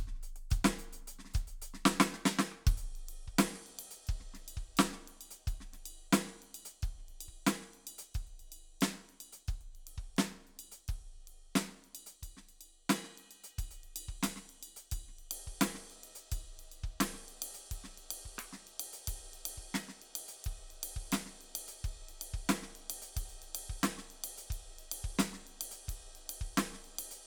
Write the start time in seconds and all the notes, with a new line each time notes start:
0.07 snare
0.15 snare
0.20 closed hi-hat, snare
0.36 closed hi-hat
0.51 closed hi-hat, kick
0.65 snare
0.79 closed hi-hat
0.93 closed hi-hat
1.08 closed hi-hat
1.19 snare
1.25 snare
1.29 snare
1.33 closed hi-hat, kick, snare
1.36 snare
1.41 snare
1.48 closed hi-hat
1.62 closed hi-hat
1.74 snare
1.86 snare
2.00 snare
2.13 snare
2.26 snare
2.39 snare
2.52 cross-stick
2.67 kick, ride
2.78 open hi-hat
2.96 ride
3.09 ride
3.28 kick
3.39 snare, ride
3.47 snare
3.54 cross-stick, snare
3.66 ride
3.79 ride
3.91 closed hi-hat
4.07 kick, ride bell
4.20 snare
4.34 snare, ride
4.48 ride bell
4.57 kick
4.77 snare, ride bell
4.92 snare
5.08 ride
5.21 ride bell
5.31 closed hi-hat
5.47 kick, ride bell
5.61 snare
5.73 snare, ride
5.86 ride bell
6.13 snare, ride bell
6.27 snare
6.42 ride
6.55 ride bell
6.65 closed hi-hat
6.83 kick, ride
6.98 snare
7.09 snare, ride
7.21 ride bell
7.28 kick
7.47 snare, ride bell
7.62 snare
7.74 ride
7.87 ride bell
7.99 closed hi-hat
8.15 kick, ride bell
8.27 closed hi-hat
8.40 ride bell
8.52 ride bell
8.81 snare, ride bell
9.09 ride
9.21 ride bell
9.33 closed hi-hat
9.48 kick, ride bell
9.61 closed hi-hat
9.75 ride
9.87 ride
9.98 kick
10.17 snare, ride, floor tom
10.47 ride bell
10.59 ride bell
10.72 closed hi-hat
10.88 kick, snare, floor tom, ride
11.28 ride
11.56 snare, ride bell
11.84 ride
11.95 ride bell
12.07 closed hi-hat
12.23 kick, ride bell
12.37 snare
12.49 ride bell
12.61 ride bell
12.90 snare, ride bell
13.04 snare
13.18 ride
13.31 ride bell
13.44 closed hi-hat
13.59 kick, ride bell
13.71 closed hi-hat
13.84 ride
13.96 ride bell
14.09 kick
14.23 snare, ride bell
14.36 snare
14.50 ride
14.63 ride bell
14.77 closed hi-hat
14.92 kick, ride bell
15.08 snare
15.19 ride
15.31 ride
15.47 kick
15.61 snare, ride
15.75 snare
15.90 ride
16.04 ride
16.15 closed hi-hat
16.29 kick, closed hi-hat, ride bell
16.59 ride
16.72 ride bell
16.84 kick
17.01 snare, ride
17.14 snare
17.29 ride
17.42 ride
17.54 closed hi-hat
17.71 kick, ride
17.84 snare
17.98 ride
18.11 ride
18.26 kick
18.39 cross-stick, ride
18.53 snare
18.67 ride
18.80 ride
18.93 closed hi-hat
19.08 kick, ride
19.34 ride
19.46 ride
19.58 kick
19.75 snare, ride
19.89 snare
20.02 ride
20.16 ride
20.28 closed hi-hat
20.45 kick, ride
20.59 closed hi-hat
20.71 ride
20.83 ride
20.96 kick
21.12 snare, ride
21.26 snare
21.41 ride
21.56 ride
21.68 closed hi-hat
21.84 kick, ride
22.09 ride
22.22 ride
22.34 kick
22.49 snare, ride
22.63 snare
22.76 ride
22.90 ride
23.02 closed hi-hat
23.17 kick, ride
23.29 closed hi-hat
23.42 ride
23.55 ride
23.70 kick
23.83 snare, ride bell
23.98 snare
24.11 ride
24.24 ride
24.38 closed hi-hat
24.50 kick, ride
24.79 ride
24.92 ride
25.04 kick
25.19 snare, ride bell
25.33 snare
25.47 ride
25.61 ride
25.71 closed hi-hat
25.89 kick, ride
26.01 closed hi-hat
26.15 ride
26.30 ride
26.41 kick
26.58 snare, ride
26.74 snare
26.85 ride
26.99 ride
27.11 closed hi-hat